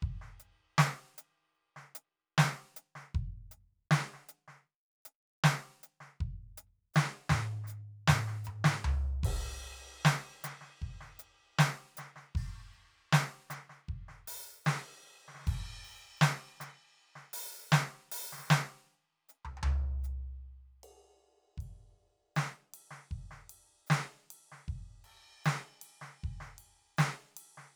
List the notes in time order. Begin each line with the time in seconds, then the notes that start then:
0.01 kick, closed hi-hat
0.22 snare
0.40 closed hi-hat
0.78 snare
1.18 closed hi-hat
1.55 closed hi-hat
1.76 snare
1.95 closed hi-hat
2.38 snare
2.43 snare
2.77 closed hi-hat
2.96 snare
3.15 kick
3.52 closed hi-hat
3.91 snare
4.14 snare
4.29 closed hi-hat
4.48 snare
5.05 closed hi-hat
5.44 snare
5.68 snare
5.83 closed hi-hat
6.01 snare
6.21 kick, closed hi-hat
6.58 open hi-hat
6.94 snare, hi-hat pedal
7.30 snare, mid tom
7.64 snare, hi-hat pedal
7.70 closed hi-hat
8.08 snare, mid tom
8.28 snare
8.45 hi-hat pedal, mid tom
8.65 snare
8.85 floor tom
9.24 kick, crash
9.62 closed hi-hat
10.05 snare
10.44 closed hi-hat, snare
10.61 snare
10.82 kick
11.01 snare
11.19 closed hi-hat
11.59 snare
11.97 closed hi-hat, snare
12.16 snare
12.35 kick, crash
12.73 closed hi-hat
13.13 snare
13.50 closed hi-hat, snare
13.70 snare
13.87 kick, closed hi-hat
14.09 snare
14.28 open hi-hat
14.65 snare, hi-hat pedal, crash
15.28 snare
15.35 snare
15.40 snare
15.44 kick, snare, ride
15.49 snare
15.85 open hi-hat
16.17 hi-hat pedal
16.21 snare
16.61 closed hi-hat, snare
17.16 snare
17.22 snare
17.33 open hi-hat
17.72 snare, hi-hat pedal
17.93 snare
18.12 open hi-hat
18.33 snare
18.38 snare
18.43 snare
18.47 snare, hi-hat pedal
18.50 snare
19.29 hi-hat pedal
19.45 floor tom
19.57 floor tom
19.63 floor tom
20.04 hi-hat pedal
20.83 crash
21.58 kick, ride
22.36 snare, hi-hat pedal
22.74 ride
22.91 snare
23.11 kick
23.31 snare
23.38 snare
23.50 ride
23.87 snare, hi-hat pedal
24.31 ride
24.52 snare
24.68 kick
25.04 ride
25.45 snare, hi-hat pedal
25.82 ride
26.02 snare
26.24 kick
26.41 snare
26.58 ride
26.98 snare, hi-hat pedal
27.37 ride
27.58 snare